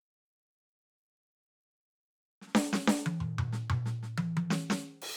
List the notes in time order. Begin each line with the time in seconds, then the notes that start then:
2.41 snare
2.47 snare
2.51 snare
2.55 snare
2.73 snare
2.87 snare
3.06 high tom
3.20 mid tom
3.38 mid tom
3.53 snare
3.70 mid tom
3.86 snare
4.03 snare
4.17 high tom
4.37 high tom
4.50 snare
4.70 snare
5.02 crash, ride